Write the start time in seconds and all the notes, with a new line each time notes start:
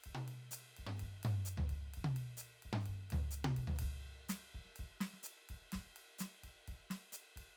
0.01 hi-hat pedal, ride
0.06 kick
0.11 kick
0.15 high tom
0.28 ride
0.52 hi-hat pedal, ride
0.77 kick, ride
0.84 kick, mid tom
0.97 hi-hat pedal, ride
1.02 kick
1.24 mid tom, ride
1.46 hi-hat pedal, ride
1.58 floor tom
1.70 kick, ride
1.77 kick
1.94 kick, ride
2.03 kick, high tom
2.17 ride
2.38 hi-hat pedal
2.42 ride
2.63 kick, ride
2.73 mid tom
2.81 hi-hat pedal
2.86 kick, ride
2.93 kick
3.11 floor tom, ride
3.31 hi-hat pedal
3.36 ride
3.45 high tom
3.57 kick, ride
3.63 kick
3.68 floor tom
3.75 floor tom, hi-hat pedal
3.79 kick, ride
3.89 kick
4.06 ride
4.29 snare, hi-hat pedal, ride
4.55 kick
4.60 kick
4.65 snare
4.76 kick, hi-hat pedal, ride
5.01 snare, ride
5.14 snare
5.24 hi-hat pedal, ride
5.50 kick, ride
5.56 kick
5.73 kick, snare, ride
5.80 kick
5.97 ride
6.19 snare, hi-hat pedal, ride
6.44 kick, ride
6.68 kick, ride
6.91 snare, ride
7.13 hi-hat pedal, ride
7.37 kick, ride